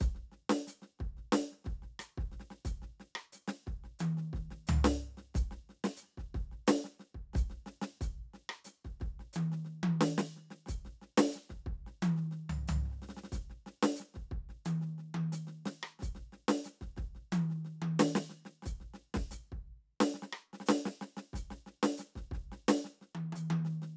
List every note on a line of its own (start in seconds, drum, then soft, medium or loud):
0.01 kick medium
0.01 snare soft
0.01 hi-hat pedal medium
0.15 snare soft
0.32 snare soft
0.50 snare medium
0.68 snare soft
0.68 hi-hat pedal medium
0.83 snare soft
1.00 kick medium
1.00 snare soft
1.18 snare soft
1.33 snare loud
1.33 hi-hat pedal medium
1.53 snare soft
1.65 kick medium
1.65 snare soft
1.83 snare soft
2.00 cross-stick medium
2.00 hi-hat pedal medium
2.18 kick medium
2.18 snare soft
2.32 snare soft
2.40 snare soft
2.51 snare soft
2.66 kick medium
2.66 snare soft
2.66 hi-hat pedal medium
2.83 snare soft
3.00 snare soft
3.16 cross-stick medium
3.33 snare soft
3.33 hi-hat pedal medium
3.48 snare medium
3.67 kick medium
3.67 snare soft
3.84 snare soft
4.00 hi-hat pedal medium
4.00 high tom loud
4.18 snare soft
4.34 kick medium
4.34 snare soft
4.51 snare soft
4.68 floor tom loud
4.68 hi-hat pedal medium
4.85 snare loud
5.02 snare soft
5.18 snare soft
5.35 kick medium
5.35 snare soft
5.35 hi-hat pedal medium
5.52 snare soft
5.70 snare soft
5.85 snare loud
5.97 hi-hat pedal medium
6.03 snare soft
6.18 kick soft
6.18 snare soft
6.35 kick medium
6.35 snare soft
6.52 snare soft
6.68 snare loud
6.68 hi-hat pedal medium
6.85 snare soft
7.00 snare soft
7.15 kick soft
7.34 kick medium
7.34 snare soft
7.34 hi-hat pedal medium
7.50 snare soft
7.67 snare soft
7.82 snare medium
8.02 kick medium
8.02 snare soft
8.02 hi-hat pedal medium
8.34 snare soft
8.50 cross-stick medium
8.65 snare soft
8.65 hi-hat pedal medium
8.85 kick soft
8.85 snare soft
9.01 kick medium
9.01 snare soft
9.20 snare soft
9.34 hi-hat pedal medium
9.34 high tom loud
9.52 snare soft
9.65 snare soft
9.84 high tom loud
10.01 snare medium
10.01 hi-hat pedal medium
10.18 snare loud
10.37 snare soft
10.51 snare soft
10.67 kick medium
10.67 snare soft
10.67 hi-hat pedal medium
10.86 snare soft
11.02 snare soft
11.18 snare loud
11.32 snare soft
11.32 hi-hat pedal medium
11.50 kick soft
11.50 snare soft
11.67 kick medium
11.73 snare soft
11.87 snare soft
12.03 hi-hat pedal medium
12.03 high tom loud
12.17 snare soft
12.32 snare soft
12.50 floor tom medium
12.68 floor tom loud
12.68 hi-hat pedal medium
12.85 snare soft
12.88 snare soft
12.92 snare soft
12.96 snare soft
13.03 snare soft
13.09 snare soft
13.17 snare soft
13.24 snare soft
13.33 kick medium
13.33 snare soft
13.33 hi-hat pedal medium
13.50 snare soft
13.67 snare soft
13.83 snare loud
13.97 snare soft
13.97 hi-hat pedal medium
14.15 kick soft
14.15 snare soft
14.32 kick medium
14.50 snare soft
14.66 hi-hat pedal medium
14.66 high tom loud
14.82 snare soft
14.99 snare soft
15.15 high tom medium
15.33 snare soft
15.33 hi-hat pedal medium
15.48 snare soft
15.66 snare medium
15.83 cross-stick medium
16.00 kick medium
16.00 snare soft
16.00 hi-hat pedal medium
16.16 snare soft
16.33 snare soft
16.49 snare medium
16.64 snare soft
16.64 hi-hat pedal medium
16.82 kick soft
16.82 snare soft
16.97 kick medium
16.97 snare soft
17.15 snare soft
17.33 hi-hat pedal medium
17.33 high tom loud
17.51 snare soft
17.65 snare soft
17.82 high tom loud
18.00 snare loud
18.00 hi-hat pedal medium
18.16 snare loud
18.30 snare soft
18.46 snare soft
18.63 kick medium
18.63 snare soft
18.63 hi-hat pedal medium
18.81 snare soft
18.94 snare soft
19.15 kick medium
19.15 snare medium
19.32 snare soft
19.32 hi-hat pedal medium
19.53 kick soft
20.01 snare loud
20.01 hi-hat pedal medium
20.15 snare soft
20.23 snare soft
20.33 cross-stick medium
20.54 snare soft
20.61 snare soft
20.67 snare loud
20.67 hi-hat pedal medium
20.86 snare medium
21.02 snare medium
21.17 snare medium
21.34 kick medium
21.34 snare soft
21.34 hi-hat pedal medium
21.51 snare soft
21.67 snare soft
21.83 snare medium
21.98 snare soft
21.98 hi-hat pedal medium
22.16 kick soft
22.16 snare soft
22.32 kick medium
22.32 snare soft
22.52 snare soft
22.69 snare loud
22.69 hi-hat pedal medium
22.85 snare soft
23.02 snare soft
23.15 high tom medium
23.33 hi-hat pedal medium
23.33 high tom medium
23.51 high tom loud
23.66 snare soft
23.83 snare soft